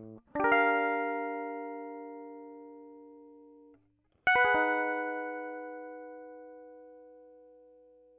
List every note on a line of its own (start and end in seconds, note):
0.00 0.20 A2
0.36 3.80 D4
0.40 3.81 G4
0.44 3.77 A#4
0.52 2.73 F5
4.27 7.12 F#5
4.36 8.19 B4
4.45 6.70 G#4
4.55 8.19 D#4